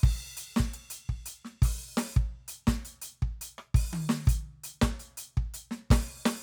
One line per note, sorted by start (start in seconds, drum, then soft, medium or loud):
0.01 kick loud
0.01 hi-hat pedal soft
0.01 crash medium
0.37 closed hi-hat loud
0.57 kick medium
0.57 snare loud
0.74 closed hi-hat medium
0.91 closed hi-hat loud
1.10 kick medium
1.26 closed hi-hat loud
1.45 snare medium
1.63 open hi-hat loud
1.63 kick loud
1.63 cross-stick medium
1.98 open hi-hat loud
1.98 snare loud
2.15 kick loud
2.15 hi-hat pedal medium
2.49 closed hi-hat loud
2.68 kick medium
2.68 snare loud
2.85 closed hi-hat medium
3.02 closed hi-hat loud
3.23 kick medium
3.42 closed hi-hat loud
3.59 cross-stick medium
3.75 open hi-hat loud
3.75 kick loud
3.94 high tom loud
4.10 snare loud
4.26 closed hi-hat loud
4.26 kick loud
4.26 hi-hat pedal medium
4.64 closed hi-hat loud
4.82 kick medium
4.82 snare loud
5.00 closed hi-hat medium
5.18 closed hi-hat loud
5.38 kick medium
5.55 closed hi-hat loud
5.72 snare medium
5.91 open hi-hat loud
5.91 kick loud
5.91 snare loud
6.26 open hi-hat loud
6.26 snare loud